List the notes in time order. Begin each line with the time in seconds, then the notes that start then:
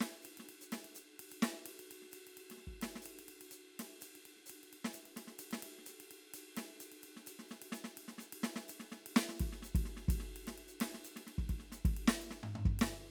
0.01 snare, ride
0.22 hi-hat pedal, ride
0.38 snare, ride
0.49 ride
0.61 hi-hat pedal
0.73 snare, ride
0.85 ride
0.95 hi-hat pedal, ride
1.20 ride
1.29 hi-hat pedal, ride
1.43 snare, ride
1.66 ride
1.80 ride
1.91 ride
2.02 snare
2.12 hi-hat pedal, ride
2.27 ride
2.50 snare, ride
2.58 snare
2.67 kick
2.82 snare, ride
2.96 snare
3.02 hi-hat pedal, ride
3.19 ride
3.29 ride
3.41 ride
3.51 hi-hat pedal
3.80 snare, ride
4.01 hi-hat pedal, ride
4.16 ride
4.37 snare
4.46 hi-hat pedal, ride
4.64 ride
4.73 ride
4.85 snare
4.94 hi-hat pedal, ride
5.06 ride
5.14 snare, hi-hat pedal, ride
5.28 snare
5.39 hi-hat pedal, ride
5.51 snare, ride
5.63 ride
5.79 snare
5.86 snare, hi-hat pedal, ride
6.00 ride
6.11 ride
6.34 hi-hat pedal, ride
6.56 snare, hi-hat pedal, ride
6.80 hi-hat pedal, ride
6.92 ride
7.02 hi-hat pedal, ride
7.17 snare
7.27 hi-hat pedal, ride
7.39 snare
7.49 snare, hi-hat pedal
7.62 ride
7.72 snare, hi-hat pedal
7.84 snare
7.96 hi-hat pedal, ride
8.08 snare
8.21 hi-hat pedal
8.33 ride
8.42 snare, hi-hat pedal
8.56 snare
8.69 hi-hat pedal, ride
8.80 snare
8.90 snare, hi-hat pedal
9.06 ride
9.16 snare, hi-hat pedal
9.29 snare
9.38 kick, hi-hat pedal, ride
9.53 snare
9.63 snare, hi-hat pedal
9.75 kick, ride
9.86 snare
9.97 snare
10.09 kick, hi-hat pedal, ride
10.20 snare
10.36 ride
10.47 snare, ride
10.58 ride
10.68 hi-hat pedal
10.81 snare, ride
10.95 snare
11.04 hi-hat pedal, ride
11.16 snare, ride
11.27 snare, ride
11.39 kick
11.50 kick, ride
11.60 snare
11.72 snare, hi-hat pedal
11.85 kick, ride
11.97 ride
12.08 snare
12.21 hi-hat pedal, ride
12.31 snare
12.43 floor tom
12.56 floor tom
12.66 kick
12.79 snare, ride